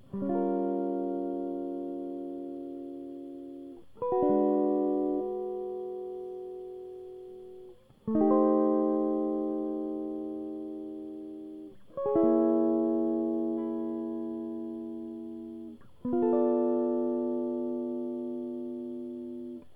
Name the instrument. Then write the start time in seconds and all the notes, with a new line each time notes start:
electric guitar
0.13 G3
0.21 C#4
0.29 F4
0.34 A#4
4.02 B4
4.12 F#4
4.23 D4
4.30 G#3
8.07 A3
8.15 D#4
8.21 G4
8.30 C5
11.97 C#5
12.05 G#4
12.17 E4
12.25 A#3
16.05 B3
16.13 F4
16.23 A4
16.34 D5